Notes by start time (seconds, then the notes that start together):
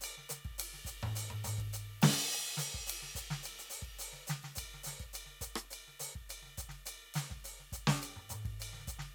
0.01 hi-hat pedal, ride bell
0.17 snare
0.29 snare, hi-hat pedal, ride
0.45 kick, ride
0.58 hi-hat pedal, ride
0.73 snare
0.85 kick, hi-hat pedal, ride
1.02 open hi-hat, high tom, ride
1.16 hi-hat pedal, ride bell
1.30 high tom
1.44 hi-hat pedal, high tom, ride
1.58 kick, ride
1.73 hi-hat pedal, ride bell
2.02 snare, hi-hat pedal, crash
2.32 hi-hat pedal, ride
2.57 snare, hi-hat pedal
2.70 kick, snare
2.87 hi-hat pedal, ride
3.02 snare
3.15 kick, hi-hat pedal, ride
3.30 snare, ride
3.43 hi-hat pedal, ride bell
3.59 open hi-hat
3.70 hi-hat pedal, ride
3.82 kick, ride
3.99 hi-hat pedal, ride bell
4.13 snare
4.27 snare, hi-hat pedal, ride bell
4.43 snare, ride
4.55 kick, hi-hat pedal, ride bell
4.74 snare
4.84 snare, hi-hat pedal, ride
5.00 kick, ride
5.13 hi-hat pedal, ride bell
5.26 snare
5.41 kick, hi-hat pedal, ride
5.56 cross-stick, ride
5.71 hi-hat pedal, ride bell
5.88 snare
6.00 snare, hi-hat pedal, ride
6.15 kick, ride
6.29 hi-hat pedal, ride bell
6.42 snare
6.46 snare
6.58 kick, hi-hat pedal, ride
6.69 snare, ride
6.86 hi-hat pedal, ride bell
7.14 snare, hi-hat pedal, ride
7.30 kick, snare
7.44 hi-hat pedal, ride
7.60 snare
7.72 kick, hi-hat pedal, ride
7.87 snare
8.02 hi-hat pedal, ride bell
8.16 high tom
8.30 hi-hat pedal, high tom, ride
8.45 kick, ride
8.60 hi-hat pedal, ride bell
8.73 snare
8.77 snare
8.80 snare
8.88 kick, hi-hat pedal, ride
8.99 snare, ride